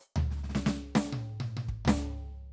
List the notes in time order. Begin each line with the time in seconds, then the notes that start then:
0.00 hi-hat pedal
0.16 floor tom
0.31 snare
0.36 snare
0.43 snare
0.49 snare
0.55 snare
0.66 snare
0.95 snare
1.12 high tom
1.40 high tom
1.57 high tom
1.68 kick
1.85 snare, floor tom